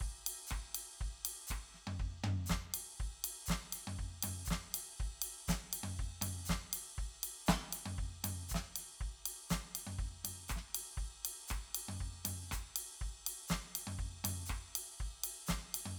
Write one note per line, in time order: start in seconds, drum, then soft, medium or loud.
0.01 kick medium
0.27 ride loud
0.47 cross-stick medium
0.47 hi-hat pedal medium
0.52 kick soft
0.75 ride loud
1.01 kick medium
1.25 ride loud
1.47 kick soft
1.47 hi-hat pedal medium
1.51 cross-stick medium
1.74 snare soft
1.87 high tom medium
2.00 kick medium
2.24 high tom loud
2.46 snare medium
2.46 hi-hat pedal medium
2.51 kick medium
2.74 ride loud
3.00 kick medium
3.24 ride loud
3.46 kick soft
3.46 snare medium
3.46 hi-hat pedal medium
3.73 ride loud
3.88 high tom medium
3.99 kick soft
4.23 high tom medium
4.23 ride loud
4.46 kick soft
4.46 hi-hat pedal medium
4.51 snare medium
4.75 ride loud
5.00 kick medium
5.22 ride loud
5.48 kick soft
5.48 snare loud
5.48 hi-hat pedal medium
5.73 ride loud
5.84 high tom medium
5.99 kick soft
6.22 closed hi-hat soft
6.22 high tom medium
6.22 ride loud
6.46 kick soft
6.46 hi-hat pedal medium
6.50 snare medium
6.73 ride loud
6.98 kick soft
7.24 ride loud
7.47 kick medium
7.47 snare loud
7.47 hi-hat pedal medium
7.73 ride loud
7.86 high tom medium
7.98 kick medium
8.24 closed hi-hat soft
8.24 high tom medium
8.24 ride loud
8.49 kick soft
8.49 hi-hat pedal medium
8.55 snare medium
8.76 ride loud
9.01 kick soft
9.26 ride loud
9.50 kick soft
9.50 snare loud
9.50 hi-hat pedal medium
9.75 ride loud
9.87 closed hi-hat soft
9.87 high tom medium
9.99 kick medium
10.25 closed hi-hat soft
10.25 high tom medium
10.25 ride loud
10.49 kick soft
10.49 cross-stick medium
10.49 hi-hat pedal medium
10.56 snare soft
10.75 ride loud
10.97 kick medium
11.25 ride loud
11.48 kick soft
11.48 cross-stick medium
11.48 hi-hat pedal medium
11.75 ride loud
11.89 high tom medium
12.01 kick soft
12.25 closed hi-hat soft
12.25 high tom medium
12.25 ride loud
12.52 kick soft
12.52 cross-stick medium
12.52 hi-hat pedal medium
12.76 ride loud
13.01 kick soft
13.27 ride loud
13.48 kick soft
13.48 snare medium
13.48 hi-hat pedal medium
13.76 ride loud
13.87 closed hi-hat soft
13.87 high tom medium
13.99 kick soft
14.25 high tom loud
14.25 ride loud
14.46 kick soft
14.46 cross-stick medium
14.46 hi-hat pedal medium
14.76 ride loud
15.00 kick soft
15.24 ride loud
15.47 kick soft
15.47 snare medium
15.47 hi-hat pedal medium
15.57 snare soft
15.75 ride loud
15.86 high tom medium